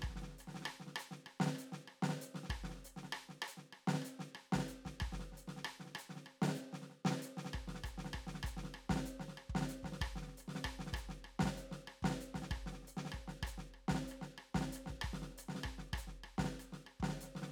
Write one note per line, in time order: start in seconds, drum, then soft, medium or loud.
0.01 kick soft
0.01 cross-stick medium
0.01 snare soft
0.10 snare soft
0.16 snare soft
0.22 snare soft
0.28 snare soft
0.32 snare soft
0.39 cross-stick soft
0.39 hi-hat pedal soft
0.47 snare soft
0.55 snare soft
0.61 snare soft
0.66 cross-stick medium
0.80 snare soft
0.87 snare soft
0.96 cross-stick medium
0.96 hi-hat pedal soft
1.11 snare soft
1.27 cross-stick soft
1.40 snare medium
1.46 snare medium
1.56 cross-stick soft
1.56 hi-hat pedal medium
1.62 cross-stick soft
1.73 snare soft
1.88 cross-stick soft
2.03 snare medium
2.10 snare medium
2.17 snare soft
2.22 snare soft
2.22 hi-hat pedal medium
2.35 snare soft
2.44 snare soft
2.50 kick soft
2.50 cross-stick medium
2.64 snare soft
2.70 snare soft
2.75 snare soft
2.80 snare soft
2.85 cross-stick soft
2.85 hi-hat pedal medium
2.97 snare soft
3.04 snare soft
3.13 cross-stick medium
3.29 snare soft
3.42 cross-stick medium
3.48 hi-hat pedal medium
3.58 snare soft
3.73 cross-stick soft
3.88 snare medium
3.94 snare medium
4.02 cross-stick soft
4.02 hi-hat pedal medium
4.08 cross-stick soft
4.20 snare soft
4.35 cross-stick medium
4.53 kick soft
4.53 snare medium
4.59 snare soft
4.67 cross-stick soft
4.67 hi-hat pedal soft
4.86 kick soft
4.86 snare soft
5.01 kick soft
5.01 cross-stick medium
5.13 snare soft
5.20 snare soft
5.32 snare soft
5.38 hi-hat pedal soft
5.48 snare soft
5.57 snare soft
5.65 cross-stick medium
5.80 snare soft
5.86 snare soft
5.90 snare soft
5.95 cross-stick medium
5.95 hi-hat pedal soft
6.10 snare soft
6.16 snare soft
6.26 cross-stick soft
6.42 snare medium
6.48 snare medium
6.55 cross-stick soft
6.55 hi-hat pedal soft
6.64 cross-stick soft
6.73 snare soft
6.82 snare soft
6.90 snare soft
7.05 snare medium
7.11 snare medium
7.18 cross-stick soft
7.18 snare soft
7.22 cross-stick soft
7.22 hi-hat pedal medium
7.38 snare soft
7.45 snare soft
7.54 kick soft
7.54 cross-stick medium
7.68 snare soft
7.75 snare soft
7.84 kick soft
7.84 cross-stick medium
7.84 hi-hat pedal soft
7.98 snare soft
8.05 snare soft
8.14 kick soft
8.14 cross-stick medium
8.27 snare soft
8.35 snare soft
8.43 kick soft
8.43 cross-stick medium
8.43 hi-hat pedal soft
8.57 snare soft
8.64 snare soft
8.74 cross-stick medium
8.90 kick soft
8.90 snare medium
8.96 snare medium
9.05 snare soft
9.05 hi-hat pedal medium
9.20 snare soft
9.29 snare soft
9.38 cross-stick soft
9.50 kick soft
9.55 snare medium
9.62 snare soft
9.69 snare soft
9.69 hi-hat pedal medium
9.83 kick soft
9.83 snare soft
9.93 snare soft
10.01 kick soft
10.01 cross-stick medium
10.16 snare soft
10.22 snare soft
10.27 snare soft
10.32 snare soft
10.38 cross-stick soft
10.38 hi-hat pedal soft
10.46 snare soft
10.48 snare soft
10.55 snare soft
10.65 kick soft
10.65 cross-stick medium
10.79 snare soft
10.87 snare soft
10.93 kick soft
10.93 cross-stick medium
10.93 hi-hat pedal soft
11.09 snare soft
11.25 cross-stick soft
11.40 kick soft
11.40 snare medium
11.46 snare medium
11.55 snare soft
11.55 hi-hat pedal soft
11.72 snare soft
11.88 cross-stick medium
12.03 kick soft
12.03 snare medium
12.10 snare soft
12.18 snare soft
12.18 hi-hat pedal soft
12.27 snare soft
12.35 kick soft
12.35 snare soft
12.42 snare soft
12.51 kick soft
12.51 cross-stick medium
12.67 snare soft
12.73 snare soft
12.83 snare soft
12.88 hi-hat pedal soft
12.97 snare soft
13.05 snare soft
13.12 kick soft
13.12 cross-stick medium
13.28 snare soft
13.43 kick soft
13.43 cross-stick medium
13.47 hi-hat pedal medium
13.58 snare soft
13.74 cross-stick soft
13.89 kick soft
13.89 snare medium
13.95 snare medium
14.04 snare soft
14.08 cross-stick soft
14.08 hi-hat pedal soft
14.22 snare soft
14.38 cross-stick medium
14.55 kick soft
14.55 snare medium
14.61 snare soft
14.69 snare soft
14.69 hi-hat pedal medium
14.76 cross-stick soft
14.86 kick soft
14.86 snare soft
15.02 kick soft
15.02 cross-stick medium
15.14 snare soft
15.22 snare soft
15.31 snare soft
15.38 cross-stick soft
15.38 hi-hat pedal medium
15.45 snare soft
15.49 snare soft
15.55 snare soft
15.64 kick soft
15.64 cross-stick medium
15.79 snare soft
15.93 kick soft
15.93 cross-stick medium
15.98 hi-hat pedal medium
16.08 snare soft
16.24 cross-stick soft
16.39 kick soft
16.39 snare medium
16.45 snare soft
16.54 snare soft
16.60 cross-stick soft
16.60 hi-hat pedal soft
16.64 snare soft
16.73 snare soft
16.87 cross-stick soft
17.00 kick soft
17.00 snare medium
17.09 snare soft
17.17 snare soft
17.21 cross-stick soft
17.21 snare soft
17.21 hi-hat pedal medium
17.29 snare soft
17.36 snare soft
17.42 snare soft
17.48 snare soft